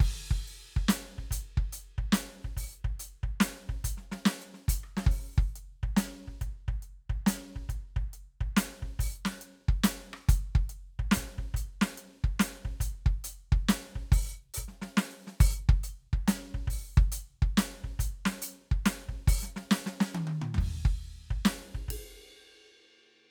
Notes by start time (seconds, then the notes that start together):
0.01 kick, crash
0.32 kick
0.48 open hi-hat
0.77 kick
0.88 closed hi-hat, kick, snare
1.19 kick
1.32 closed hi-hat, kick
1.58 kick
1.73 closed hi-hat
1.99 kick
2.13 closed hi-hat, snare
2.45 kick
2.58 open hi-hat, kick
2.85 kick
3.00 closed hi-hat
3.24 kick
3.41 closed hi-hat, snare
3.70 kick
3.85 closed hi-hat, kick
3.98 snare
4.13 snare
4.26 snare, hi-hat pedal
4.41 open hi-hat, hi-hat pedal
4.55 snare
4.69 closed hi-hat, kick
4.84 cross-stick
4.98 snare
5.07 kick
5.12 open hi-hat, snare
5.39 kick
5.56 closed hi-hat
5.84 kick
5.98 closed hi-hat, snare
6.28 kick
6.42 kick, closed hi-hat
6.69 kick
6.83 closed hi-hat
7.10 kick
7.27 closed hi-hat, snare
7.57 kick
7.70 kick, closed hi-hat
7.97 kick
8.14 closed hi-hat
8.41 kick
8.58 closed hi-hat, snare
8.83 kick
8.87 cross-stick
9.00 open hi-hat, kick
9.26 snare
9.42 closed hi-hat
9.69 kick
9.84 closed hi-hat, snare
10.14 cross-stick
10.29 closed hi-hat, kick
10.56 kick
10.70 closed hi-hat
11.00 kick
11.12 closed hi-hat, snare
11.18 kick
11.39 kick
11.55 closed hi-hat, kick
11.82 snare
11.98 closed hi-hat
12.25 kick
12.40 closed hi-hat, snare
12.66 kick
12.81 closed hi-hat, kick
13.07 kick
13.25 closed hi-hat
13.53 kick
13.69 closed hi-hat, snare
13.96 kick
14.13 open hi-hat, kick
14.55 open hi-hat, kick, hi-hat pedal
14.69 snare
14.83 snare
14.98 snare
15.12 open hi-hat
15.28 snare
15.41 open hi-hat, kick
15.70 kick
15.84 closed hi-hat
16.14 kick
16.29 closed hi-hat, snare
16.55 kick
16.68 open hi-hat, kick
16.98 kick
17.13 closed hi-hat
17.43 kick
17.58 closed hi-hat, snare
17.85 kick
18.00 closed hi-hat, kick
18.26 snare
18.43 closed hi-hat
18.72 kick
18.86 open hi-hat, snare
19.09 kick
19.28 open hi-hat, kick
19.43 snare, hi-hat pedal
19.57 snare
19.72 snare, hi-hat pedal
19.87 snare
20.01 snare
20.16 high tom
20.28 high tom
20.41 kick, mid tom
20.55 kick, floor tom
20.62 crash
20.86 kick
21.31 kick
21.46 snare, ride
21.75 kick
21.89 kick, ride
22.77 ride